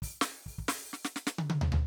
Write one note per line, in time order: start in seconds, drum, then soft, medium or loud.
0.02 open hi-hat medium
0.02 kick soft
0.21 open hi-hat medium
0.21 snare loud
0.46 open hi-hat medium
0.46 kick soft
0.58 kick soft
0.68 open hi-hat loud
0.68 snare loud
0.93 snare medium
1.05 snare loud
1.16 snare medium
1.27 snare loud
1.38 high tom loud
1.50 high tom loud
1.61 floor tom loud
1.72 floor tom loud